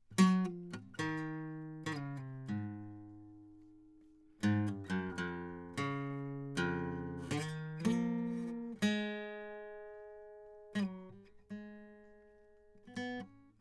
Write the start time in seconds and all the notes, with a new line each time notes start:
0.20 F#3
0.47 F3
0.75 C3
1.00 D#3
1.88 D#3
1.98 C#3
2.19 C3
2.50 G#2
4.45 G#2
4.69 G2
4.92 F#2
5.20 F2
5.79 C#3
6.59 F2
7.32 D#3
7.82 F3
7.86 A#3
8.78 D#3
8.84 G#3
9.30 G#3
10.77 F#3
11.11 G4
11.29 G#4
11.52 G#3
12.98 B3
13.08 B3
13.22 C#4